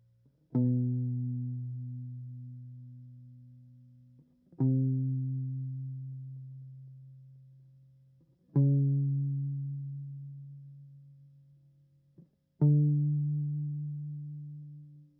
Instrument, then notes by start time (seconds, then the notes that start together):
electric guitar
0.56 B2
4.62 C3
8.57 C#3
12.63 D3